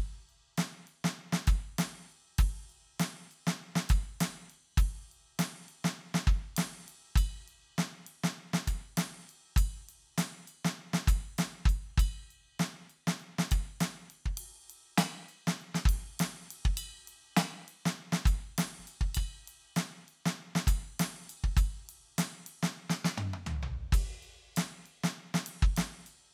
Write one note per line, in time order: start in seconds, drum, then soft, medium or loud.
0.30 ride soft
0.58 snare loud
0.58 ride bell medium
0.88 ride soft
1.05 snare loud
1.33 snare loud
1.48 kick loud
1.48 ride bell medium
1.79 snare loud
1.79 ride loud
2.10 ride soft
2.39 kick loud
2.39 ride loud
2.70 ride soft
3.00 snare loud
3.00 ride loud
3.32 ride bell soft
3.48 snare loud
3.76 snare loud
3.90 kick loud
3.90 ride bell medium
4.21 snare loud
4.21 ride bell medium
4.50 ride soft
4.78 kick loud
4.78 ride medium
5.12 ride soft
5.40 snare loud
5.40 ride loud
5.69 ride soft
5.85 snare loud
6.15 snare loud
6.28 kick loud
6.28 snare soft
6.28 ride soft
6.57 snare loud
6.57 ride loud
6.89 ride medium
7.16 kick loud
7.16 ride bell loud
7.49 ride soft
7.79 snare loud
7.79 ride soft
8.07 ride medium
8.24 snare loud
8.54 snare loud
8.68 kick medium
8.68 ride bell medium
8.98 snare loud
8.98 ride loud
9.30 ride soft
9.57 kick loud
9.57 ride bell medium
9.89 ride medium
10.19 snare loud
10.19 ride bell medium
10.48 ride bell soft
10.65 snare loud
10.94 snare loud
11.08 kick loud
11.08 ride bell medium
11.39 snare loud
11.39 ride bell medium
11.66 kick loud
11.66 ride bell medium
11.98 kick loud
11.98 ride bell loud
12.31 ride bell soft
12.60 snare loud
12.60 ride medium
12.90 ride bell soft
13.08 snare loud
13.21 ride soft
13.39 snare loud
13.52 kick loud
13.52 ride bell medium
13.81 snare loud
13.81 ride bell medium
14.11 ride soft
14.26 kick medium
14.38 ride loud
14.71 ride medium
14.98 snare loud
14.98 ride bell loud
15.29 ride bell soft
15.48 snare loud
15.61 ride soft
15.75 snare loud
15.86 kick loud
15.86 ride loud
16.20 snare loud
16.20 ride loud
16.51 ride medium
16.66 kick loud
16.78 ride bell loud
17.08 ride medium
17.37 snare loud
17.37 ride bell loud
17.69 ride medium
17.86 snare loud
18.13 snare loud
18.26 kick loud
18.26 ride bell medium
18.59 snare loud
18.59 ride loud
18.80 kick soft
18.88 ride bell soft
19.02 kick medium
19.15 kick medium
19.15 ride bell loud
19.48 ride medium
19.77 snare loud
19.77 ride bell medium
20.09 ride soft
20.26 snare loud
20.56 snare loud
20.68 kick loud
20.68 ride bell medium
21.00 snare loud
21.00 ride loud
21.30 ride bell medium
21.45 kick medium
21.57 kick loud
21.57 ride bell medium
21.90 ride medium
22.19 snare loud
22.19 ride bell loud
22.47 ride medium
22.64 snare loud
22.90 snare loud
23.05 snare loud
23.18 high tom loud
23.34 high tom medium
23.47 mid tom loud
23.64 floor tom loud
23.93 kick loud
23.93 ride bell medium
23.93 crash medium
24.23 ride soft
24.57 snare loud
24.57 ride bell medium
24.87 ride soft
25.04 snare loud
25.35 snare loud
25.47 ride medium
25.63 kick loud
25.77 snare loud
25.77 ride medium
26.07 ride bell soft